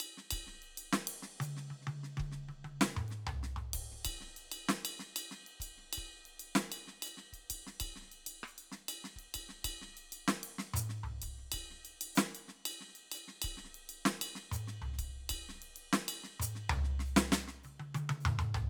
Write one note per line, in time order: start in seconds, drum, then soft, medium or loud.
0.00 ride bell loud
0.17 snare soft
0.31 kick soft
0.31 ride bell loud
0.47 snare soft
0.53 snare soft
0.62 ride soft
0.77 ride bell medium
0.92 snare medium
1.07 ride loud
1.22 snare soft
1.40 hi-hat pedal medium
1.40 high tom loud
1.57 snare soft
1.70 high tom medium
1.82 snare soft
1.87 high tom medium
2.03 snare soft
2.17 kick soft
2.17 high tom loud
2.30 kick soft
2.30 snare soft
2.48 high tom medium
2.64 high tom medium
2.81 snare loud
2.96 mid tom loud
3.08 snare soft
3.08 ride soft
3.27 floor tom medium
3.43 snare soft
3.56 mid tom medium
3.73 kick soft
3.73 ride loud
3.81 kick soft
3.91 snare soft
4.05 kick soft
4.05 ride bell loud
4.12 kick soft
4.20 snare soft
4.26 snare soft
4.36 ride bell soft
4.52 ride bell loud
4.69 snare medium
4.85 ride bell loud
4.99 snare soft
5.16 hi-hat pedal medium
5.16 ride bell loud
5.31 snare soft
5.42 snare soft
5.46 ride soft
5.60 kick soft
5.60 hi-hat pedal soft
5.60 ride bell medium
5.77 snare soft
5.81 snare soft
5.85 snare soft
5.88 snare soft
5.90 snare soft
5.90 ride bell loud
5.97 kick soft
6.25 ride soft
6.39 ride bell medium
6.55 snare loud
6.72 ride bell loud
6.87 snare soft
7.02 hi-hat pedal medium
7.02 ride bell loud
7.17 snare soft
7.33 kick soft
7.33 ride bell soft
7.50 kick soft
7.50 ride bell loud
7.67 snare soft
7.80 kick soft
7.80 ride bell loud
7.86 kick soft
7.96 snare soft
8.01 snare soft
8.05 snare soft
8.08 snare soft
8.08 ride bell soft
8.26 ride bell medium
8.43 cross-stick medium
8.47 hi-hat pedal soft
8.58 ride bell medium
8.71 snare soft
8.88 hi-hat pedal medium
8.88 ride bell loud
9.04 snare soft
9.16 kick soft
9.16 ride soft
9.34 kick soft
9.34 ride bell loud
9.49 snare soft
9.64 kick soft
9.64 ride bell loud
9.81 snare soft
9.87 snare soft
9.94 cross-stick soft
9.94 ride bell soft
10.12 ride bell medium
10.28 snare loud
10.43 ride medium
10.58 snare medium
10.74 hi-hat pedal loud
10.74 mid tom loud
10.89 snare soft
11.03 floor tom medium
11.22 kick soft
11.22 ride bell medium
11.38 snare soft
11.52 kick soft
11.52 ride bell loud
11.70 snare soft
11.74 snare soft
11.85 ride bell medium
12.01 ride bell loud
12.15 snare loud
12.15 hi-hat pedal loud
12.35 ride bell medium
12.48 snare soft
12.65 ride bell loud
12.70 hi-hat pedal soft
12.80 snare soft
12.88 snare soft
12.93 snare soft
12.93 ride bell soft
12.98 snare soft
13.01 snare soft
13.04 snare soft
13.12 hi-hat pedal medium
13.12 ride bell loud
13.28 snare soft
13.42 kick soft
13.42 ride bell loud
13.50 kick soft
13.57 snare soft
13.64 snare soft
13.74 ride medium
13.89 ride bell medium
14.05 snare loud
14.21 ride bell loud
14.35 snare soft
14.51 hi-hat pedal medium
14.51 mid tom loud
14.67 snare soft
14.82 floor tom medium
14.93 snare soft
14.98 kick soft
14.98 ride bell medium
15.07 kick soft
15.19 snare soft
15.29 kick soft
15.29 ride bell loud
15.49 snare soft
15.54 snare soft
15.62 ride medium
15.76 ride medium
15.93 snare loud
16.08 ride bell loud
16.23 snare soft
16.40 hi-hat pedal loud
16.40 mid tom loud
16.55 snare soft
16.69 floor tom loud
16.84 snare soft
16.99 snare soft
17.05 hi-hat pedal soft
17.16 snare loud
17.32 snare loud
17.48 snare soft
17.63 hi-hat pedal soft
17.63 high tom soft
17.79 high tom medium
17.94 hi-hat pedal soft
17.94 high tom loud
18.09 high tom loud
18.20 hi-hat pedal soft
18.25 mid tom loud
18.39 mid tom loud
18.54 floor tom loud